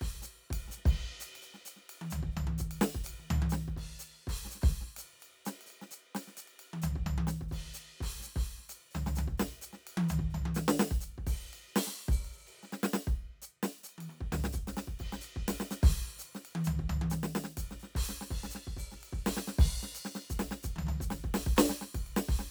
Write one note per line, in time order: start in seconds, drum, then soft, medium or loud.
0.01 kick medium
0.01 crash medium
0.22 snare soft
0.22 hi-hat pedal medium
0.50 kick medium
0.50 ride loud
0.67 snare soft
0.67 hi-hat pedal medium
0.77 snare soft
0.85 kick loud
0.85 ride medium
1.20 hi-hat pedal medium
1.20 ride medium
1.35 ride medium
1.42 hi-hat pedal soft
1.42 ride soft
1.54 snare soft
1.65 hi-hat pedal medium
1.65 ride medium
1.76 snare soft
1.89 ride medium
2.01 high tom medium
2.10 floor tom medium
2.10 hi-hat pedal medium
2.23 kick medium
2.31 hi-hat pedal soft
2.37 floor tom medium
2.47 high tom medium
2.58 kick medium
2.58 hi-hat pedal medium
2.71 ride medium
2.81 snare loud
2.95 kick medium
3.04 hi-hat pedal medium
3.04 ride medium
3.19 high tom soft
3.30 floor tom loud
3.42 high tom medium
3.49 snare medium
3.49 hi-hat pedal medium
3.68 kick medium
3.76 kick medium
3.76 crash medium
3.76 ride soft
3.99 hi-hat pedal medium
4.04 ride soft
4.27 kick medium
4.27 crash medium
4.45 snare soft
4.50 hi-hat pedal medium
4.55 snare soft
4.61 kick loud
4.61 crash medium
4.72 hi-hat pedal soft
4.81 snare soft
4.96 hi-hat pedal medium
4.96 ride medium
5.19 hi-hat pedal soft
5.19 ride medium
5.45 snare medium
5.45 hi-hat pedal medium
5.45 ride soft
5.61 ride medium
5.66 hi-hat pedal soft
5.70 ride medium
5.81 snare soft
5.91 hi-hat pedal medium
5.91 ride soft
6.15 snare medium
6.15 ride medium
6.27 snare soft
6.37 hi-hat pedal medium
6.37 ride medium
6.47 ride soft
6.59 ride medium
6.73 high tom medium
6.82 floor tom medium
6.82 hi-hat pedal medium
6.96 kick medium
7.06 floor tom loud
7.18 high tom medium
7.27 snare medium
7.27 hi-hat pedal medium
7.41 kick medium
7.48 kick medium
7.48 hi-hat pedal soft
7.52 crash medium
7.52 ride medium
7.74 hi-hat pedal medium
7.78 ride bell soft
8.00 kick medium
8.00 crash medium
8.19 snare soft
8.19 hi-hat pedal medium
8.26 snare soft
8.36 kick medium
8.36 crash medium
8.58 snare soft
8.69 hi-hat pedal medium
8.69 ride medium
8.91 snare medium
8.91 hi-hat pedal soft
8.95 floor tom medium
9.06 snare medium
9.06 floor tom medium
9.15 snare soft
9.15 floor tom medium
9.15 hi-hat pedal medium
9.28 kick medium
9.37 snare loud
9.37 hi-hat pedal soft
9.37 ride soft
9.61 hi-hat pedal medium
9.61 ride medium
9.73 snare soft
9.87 ride medium
9.97 high tom loud
10.08 floor tom medium
10.08 hi-hat pedal medium
10.19 kick medium
10.30 hi-hat pedal soft
10.34 floor tom medium
10.45 high tom medium
10.54 snare medium
10.54 hi-hat pedal medium
10.68 snare loud
10.79 snare loud
10.91 kick medium
11.00 hi-hat pedal medium
11.00 ride soft
11.18 kick medium
11.26 open hi-hat medium
11.26 kick medium
11.26 ride medium
11.53 ride medium
11.76 snare loud
11.76 crash medium
11.87 snare soft
12.01 ride soft
12.08 open hi-hat medium
12.08 kick loud
12.25 ride soft
12.47 ride soft
12.63 snare soft
12.72 snare medium
12.83 snare loud
12.88 hi-hat pedal soft
12.93 snare loud
13.07 kick medium
13.42 hi-hat pedal medium
13.63 snare loud
13.63 ride medium
13.83 hi-hat pedal medium
13.89 ride bell soft
13.98 high tom medium
13.98 ride medium
14.09 high tom soft
14.09 ride soft
14.21 kick medium
14.32 snare medium
14.32 floor tom medium
14.44 snare medium
14.52 kick medium
14.52 hi-hat pedal medium
14.67 snare medium
14.67 ride medium
14.77 snare medium
14.87 kick medium
14.97 kick medium
14.97 hi-hat pedal soft
14.97 ride medium
15.12 snare medium
15.21 hi-hat pedal medium
15.21 ride soft
15.36 kick medium
15.48 snare loud
15.48 ride loud
15.60 snare medium
15.71 snare medium
15.71 hi-hat pedal medium
15.83 kick loud
15.83 crash medium
16.19 hi-hat pedal medium
16.19 ride medium
16.35 snare medium
16.40 hi-hat pedal soft
16.45 ride medium
16.55 high tom loud
16.64 floor tom medium
16.64 hi-hat pedal medium
16.79 kick medium
16.89 floor tom loud
17.01 high tom loud
17.10 snare medium
17.10 hi-hat pedal medium
17.23 snare medium
17.35 snare medium
17.44 snare medium
17.57 kick medium
17.57 hi-hat pedal medium
17.57 ride medium
17.71 snare soft
17.79 snare soft
17.79 hi-hat pedal soft
17.95 kick medium
17.95 crash medium
18.04 hi-hat pedal medium
18.09 snare medium
18.21 snare medium
18.21 hi-hat pedal soft
18.30 kick medium
18.30 crash medium
18.43 snare medium
18.50 hi-hat pedal medium
18.55 snare soft
18.67 kick medium
18.77 open hi-hat medium
18.77 kick medium
18.92 snare soft
19.03 ride medium
19.12 kick medium
19.26 snare loud
19.26 crash medium
19.37 snare medium
19.47 snare medium
19.58 kick loud
19.58 crash loud
19.83 snare soft
19.95 hi-hat pedal medium
19.95 ride medium
20.05 snare medium
20.05 ride soft
20.15 snare medium
20.15 ride soft
20.29 kick medium
20.29 hi-hat pedal medium
20.39 snare medium
20.39 ride soft
20.51 snare medium
20.63 kick medium
20.63 hi-hat pedal medium
20.63 ride medium
20.76 floor tom medium
20.76 high tom medium
20.87 floor tom medium
20.87 high tom medium
21.00 kick medium
21.00 hi-hat pedal medium
21.10 snare medium
21.10 ride medium
21.24 kick medium
21.34 snare loud
21.34 crash medium
21.46 kick medium
21.56 snare loud
21.56 crash medium
21.69 snare medium
21.81 snare medium
21.94 kick medium
21.94 ride medium
22.06 ride soft
22.16 snare loud
22.28 kick medium
22.28 crash medium
22.39 snare medium